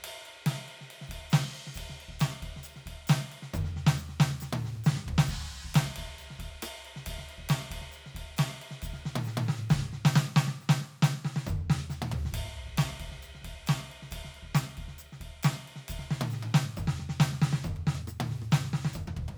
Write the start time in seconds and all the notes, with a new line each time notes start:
0.05 ride
0.26 ride
0.47 snare, ride
0.69 ride
0.82 snare
0.91 ride
1.02 snare
1.08 kick, percussion
1.12 ride
1.31 snare, percussion, ride
1.56 ride
1.68 snare
1.75 kick, ride, percussion
1.83 kick
1.90 snare
2.01 ride
2.09 kick
2.20 snare, ride, percussion
2.43 kick, ride
2.50 kick
2.57 snare
2.64 ride, percussion
2.77 snare
2.87 kick, ride
2.93 kick
3.08 snare, ride, percussion
3.33 ride
3.43 snare
3.54 kick, mid tom, percussion
3.63 kick, snare
3.77 snare
3.87 snare
3.98 snare, percussion
4.10 snare
4.21 snare
4.31 snare
4.41 snare, percussion
4.53 high tom
4.66 snare
4.76 cross-stick
4.85 snare, percussion
4.98 snare
5.07 kick, floor tom
5.19 snare
5.28 kick, percussion, crash
5.43 snare
5.65 kick
5.71 kick
5.75 snare, ride, percussion
5.84 snare
5.97 kick, ride
6.05 kick, snare
6.19 ride, percussion
6.31 snare
6.40 kick, ride
6.46 kick
6.63 cross-stick, ride, percussion
6.86 ride
6.97 snare
7.07 kick, ride, percussion
7.15 kick
7.19 snare
7.30 ride
7.39 kick
7.44 kick
7.50 snare, ride, percussion
7.71 kick, ride
7.78 kick, snare
7.92 ride, percussion
8.07 snare
8.15 kick, ride
8.22 kick
8.37 snare, ride, percussion
8.62 ride
8.72 snare
8.83 kick, ride, percussion
8.91 kick, snare
9.06 snare
9.16 high tom
9.25 snare, percussion
9.38 high tom
9.49 snare
9.60 cross-stick
9.70 kick, snare, percussion
9.80 kick, snare
9.93 snare
10.06 snare
10.14 snare, percussion
10.26 snare
10.37 snare
10.48 snare
10.62 snare, percussion
10.70 snare
10.82 snare
11.03 snare, percussion
11.14 snare
11.25 snare
11.37 snare
11.47 kick, mid tom, percussion
11.63 kick
11.70 snare
11.91 snare, percussion
12.03 high tom
12.12 floor tom
12.26 snare
12.33 kick, ride, percussion
12.40 kick
12.45 kick, cross-stick
12.55 ride
12.67 kick
12.78 snare, ride, percussion
13.01 kick, ride
13.07 kick
13.12 snare
13.23 ride, percussion
13.36 snare
13.42 kick, snare, ride
13.67 snare, ride, percussion
13.92 ride
14.03 snare
14.12 kick, ride, percussion
14.19 kick
14.25 snare
14.35 ride
14.43 kick
14.55 snare, ride, percussion
14.65 snare
14.78 kick, ride
14.85 kick, snare
14.99 ride, percussion
15.13 snare
15.21 kick, ride
15.27 kick
15.44 snare, ride, percussion
15.52 snare
15.68 ride
15.76 snare
15.89 kick, ride, percussion
15.97 kick, snare
16.00 kick
16.11 snare
16.22 high tom
16.31 snare, percussion
16.43 high tom
16.55 snare
16.69 snare
16.77 kick, mid tom, percussion
16.86 kick, snare
17.00 snare
17.10 snare
17.21 snare, percussion
17.33 snare
17.42 snare
17.53 snare
17.65 kick, mid tom, percussion
17.74 kick, high tom
17.88 snare
17.95 high tom
18.08 cross-stick, percussion
18.21 high tom
18.31 snare
18.43 cross-stick
18.52 snare, percussion
18.65 snare
18.74 snare
18.85 snare
18.94 kick, mid tom, percussion
19.01 kick
19.08 mid tom
19.17 kick, floor tom
19.25 kick, floor tom